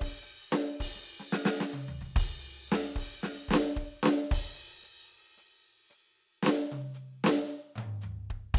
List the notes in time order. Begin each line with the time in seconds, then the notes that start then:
0.01 kick, hi-hat pedal, crash
0.23 closed hi-hat
0.51 snare, hi-hat pedal
0.80 kick, crash
0.95 snare
1.01 hi-hat pedal
1.20 snare
1.33 snare
1.46 snare
1.57 hi-hat pedal
1.61 snare
1.74 high tom
1.89 floor tom
2.01 kick, floor tom
2.16 kick, hi-hat pedal, crash
2.68 snare, hi-hat pedal
2.96 kick, crash
3.21 closed hi-hat, snare, hi-hat pedal
3.49 kick, snare
3.54 snare
3.75 kick, hi-hat pedal
4.03 snare
4.06 snare
4.31 kick, crash
4.83 hi-hat pedal
5.38 hi-hat pedal
5.90 hi-hat pedal
6.43 snare, hi-hat pedal
6.47 snare
6.72 high tom
6.94 hi-hat pedal
7.24 snare
7.27 snare
7.48 hi-hat pedal
7.76 mid tom
7.78 mid tom
8.02 floor tom, hi-hat pedal
8.30 kick
8.54 kick, crash